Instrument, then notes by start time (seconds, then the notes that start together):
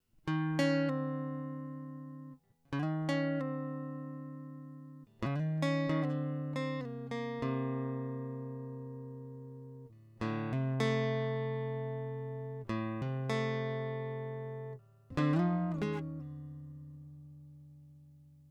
acoustic guitar
0.28 D#3
0.60 C#4
0.90 D3 C4
2.73 C#3
2.85 D#3
3.09 C#4
3.41 D3 C4
5.23 C#3
5.37 D#3
5.63 C#4
5.90 D#3
6.04 D3 C4
6.57 C4
6.81 C3 A#3
7.12 A#3
7.43 C3
10.22 A2
10.54 C3 A3
10.81 A3
12.70 A2
13.03 C3
13.30 A3
15.18 D3 C4
15.34 F3 D#4
15.73 D#3 C#4
15.83 G#3
16.21 D3 C4